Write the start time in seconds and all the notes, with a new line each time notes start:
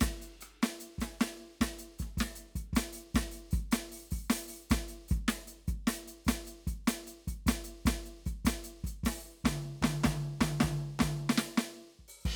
0.01 open hi-hat, kick, snare, hi-hat pedal
0.22 closed hi-hat
0.41 closed hi-hat, cross-stick, hi-hat pedal
0.63 open hi-hat, snare, hi-hat pedal
0.81 closed hi-hat
0.99 closed hi-hat, kick, snare, hi-hat pedal
1.20 open hi-hat, snare, hi-hat pedal
1.61 open hi-hat, kick, snare, hi-hat pedal
1.79 closed hi-hat
1.99 closed hi-hat, kick, hi-hat pedal
2.03 snare
2.18 closed hi-hat, kick, snare, hi-hat pedal
2.36 closed hi-hat
2.56 open hi-hat, kick, hi-hat pedal
2.74 open hi-hat, kick, snare
2.79 hi-hat pedal
2.93 open hi-hat
3.15 open hi-hat, kick, snare, hi-hat pedal
3.32 open hi-hat
3.51 open hi-hat, kick
3.72 open hi-hat, snare, hi-hat pedal
3.92 open hi-hat
4.11 open hi-hat, kick
4.30 open hi-hat, snare
4.48 open hi-hat
4.70 closed hi-hat, kick, snare
4.88 open hi-hat
5.08 open hi-hat, kick
5.29 closed hi-hat, snare
5.48 closed hi-hat
5.68 open hi-hat, kick, hi-hat pedal
5.88 open hi-hat, snare
5.96 hi-hat pedal
6.08 closed hi-hat
6.25 closed hi-hat, kick, snare, hi-hat pedal
6.46 closed hi-hat, hi-hat pedal
6.68 open hi-hat, kick, hi-hat pedal
6.85 closed hi-hat, snare, hi-hat pedal
7.03 hi-hat pedal
7.08 closed hi-hat
7.28 open hi-hat, kick, hi-hat pedal
7.47 open hi-hat, kick, snare, hi-hat pedal
7.65 closed hi-hat
7.86 open hi-hat, kick, snare, hi-hat pedal
8.06 open hi-hat, hi-hat pedal
8.26 open hi-hat, kick, hi-hat pedal
8.45 closed hi-hat, kick, snare
8.64 closed hi-hat, hi-hat pedal
8.84 closed hi-hat, kick, hi-hat pedal
9.04 open hi-hat, kick, snare
9.45 kick, snare, mid tom
9.82 kick, snare, mid tom
10.04 kick, snare, mid tom
10.41 kick, snare, mid tom
10.61 kick, snare, mid tom
11.00 kick, snare, mid tom
11.30 snare
11.38 snare
11.58 snare
12.00 kick
12.08 open hi-hat
12.23 kick
12.26 kick, crash